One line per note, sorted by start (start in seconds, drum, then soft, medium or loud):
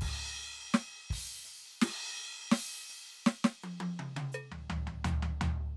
0.01 kick medium
0.01 ride loud
0.73 snare loud
0.73 hi-hat pedal medium
1.10 kick medium
1.10 crash loud
1.45 hi-hat pedal medium
1.82 snare loud
1.82 ride loud
2.13 hi-hat pedal medium
2.52 snare loud
2.52 crash loud
2.89 hi-hat pedal medium
3.26 snare loud
3.44 snare loud
3.62 hi-hat pedal soft
3.62 high tom medium
3.80 high tom loud
3.99 mid tom medium
4.17 mid tom loud
4.32 hi-hat pedal medium
4.32 percussion loud
4.52 floor tom medium
4.70 floor tom loud
4.87 floor tom medium
5.05 floor tom loud
5.05 hi-hat pedal medium
5.23 floor tom medium
5.41 floor tom loud